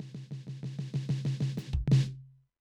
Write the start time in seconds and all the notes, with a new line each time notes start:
0.00 snare, floor tom
0.14 snare, floor tom
0.31 snare, floor tom
0.47 snare, floor tom
0.63 snare, floor tom
0.79 snare, floor tom
0.94 snare, floor tom
1.09 snare, floor tom
1.25 snare, floor tom
1.40 snare, floor tom
1.57 snare, floor tom, hi-hat pedal
1.73 kick
1.88 snare, floor tom